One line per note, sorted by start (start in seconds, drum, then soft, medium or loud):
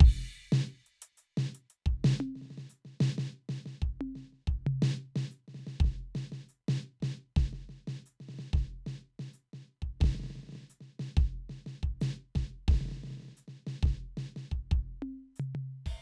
0.01 kick loud
0.01 crash medium
0.37 closed hi-hat soft
0.53 snare loud
0.69 closed hi-hat soft
0.87 closed hi-hat soft
1.03 closed hi-hat medium
1.18 hi-hat pedal medium
1.38 snare medium
1.55 closed hi-hat medium
1.71 closed hi-hat soft
1.87 kick medium
2.05 snare loud
2.11 snare soft
2.21 high tom loud
2.36 snare soft
2.42 snare soft
2.46 snare soft
2.51 snare soft
2.58 snare soft
2.70 hi-hat pedal medium
2.86 snare soft
3.01 snare loud
3.19 snare medium
3.50 snare medium
3.66 snare soft
3.82 kick medium
4.01 high tom loud
4.16 snare soft
4.33 snare soft
4.48 kick medium
4.67 floor tom loud
4.83 snare loud
5.16 snare medium
5.31 hi-hat pedal medium
5.48 snare soft
5.55 snare soft
5.60 snare soft
5.67 snare soft
5.81 kick medium
5.85 snare soft
6.16 snare medium
6.33 snare soft
6.49 hi-hat pedal medium
6.69 snare loud
7.01 kick soft
7.01 snare medium
7.37 kick medium
7.37 snare medium
7.53 snare soft
7.70 snare soft
7.88 snare medium
8.06 hi-hat pedal medium
8.21 snare soft
8.29 snare soft
8.35 snare soft
8.39 snare soft
8.54 kick medium
8.54 snare soft
8.87 snare medium
9.20 snare soft
9.34 hi-hat pedal medium
9.54 snare soft
9.83 kick soft
10.01 kick medium
10.01 snare medium
10.05 snare medium
10.15 snare soft
10.20 snare soft
10.24 snare soft
10.27 snare soft
10.31 snare soft
10.36 snare soft
10.40 snare soft
10.44 snare soft
10.48 snare soft
10.50 snare soft
10.53 snare soft
10.56 snare soft
10.61 snare soft
10.64 snare soft
10.70 hi-hat pedal medium
10.81 snare soft
11.00 snare medium
11.17 kick medium
11.17 snare soft
11.50 snare soft
11.67 snare soft
11.83 kick medium
12.01 snare medium
12.01 hi-hat pedal medium
12.36 kick medium
12.36 snare medium
12.69 kick medium
12.69 snare medium
12.72 snare medium
12.75 snare soft
12.81 snare soft
12.86 snare soft
12.89 snare soft
12.92 snare soft
12.98 snare soft
13.02 snare soft
13.04 snare soft
13.08 snare soft
13.11 snare soft
13.14 snare soft
13.20 snare soft
13.23 snare soft
13.26 snare soft
13.29 snare soft
13.33 snare soft
13.38 hi-hat pedal medium
13.48 snare soft
13.67 snare medium
13.83 kick medium
13.83 snare medium
14.18 snare medium
14.37 snare soft
14.52 kick soft
14.72 kick medium
15.03 high tom loud
15.36 floor tom medium
15.36 hi-hat pedal medium
15.56 floor tom medium
15.87 kick soft
15.87 ride medium